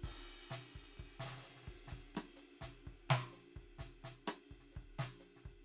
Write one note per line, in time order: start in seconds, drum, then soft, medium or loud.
0.01 kick soft
0.01 hi-hat pedal soft
0.01 crash medium
0.51 snare medium
0.51 hi-hat pedal medium
0.51 ride medium
0.74 kick soft
0.74 ride soft
0.79 kick soft
0.79 snare soft
0.93 hi-hat pedal soft
0.98 kick soft
0.98 ride soft
1.05 kick soft
1.20 snare medium
1.20 ride soft
1.26 snare soft
1.32 snare soft
1.38 snare soft
1.44 snare soft
1.44 hi-hat pedal medium
1.44 ride soft
1.50 snare soft
1.56 snare soft
1.63 snare soft
1.68 kick soft
1.68 ride medium
1.73 kick soft
1.88 snare soft
1.88 ride medium
1.93 kick soft
1.98 kick soft
2.16 cross-stick medium
2.16 ride medium
2.37 hi-hat pedal medium
2.37 ride soft
2.62 kick soft
2.62 snare soft
2.62 ride soft
2.68 kick soft
2.86 kick soft
2.86 ride soft
2.93 kick soft
3.10 snare loud
3.10 ride medium
3.23 snare soft
3.33 hi-hat pedal medium
3.37 snare soft
3.42 snare soft
3.57 kick soft
3.57 ride soft
3.62 kick soft
3.77 kick soft
3.77 snare soft
3.77 hi-hat pedal soft
3.77 ride soft
3.86 kick soft
4.04 snare soft
4.04 ride soft
4.27 cross-stick medium
4.27 hi-hat pedal medium
4.27 ride medium
4.51 kick soft
4.61 snare soft
4.72 hi-hat pedal soft
4.72 ride soft
4.77 kick soft
4.82 kick soft
4.99 snare medium
4.99 ride medium
5.20 hi-hat pedal medium
5.20 ride soft
5.37 snare soft
5.44 kick soft
5.44 ride soft
5.51 kick soft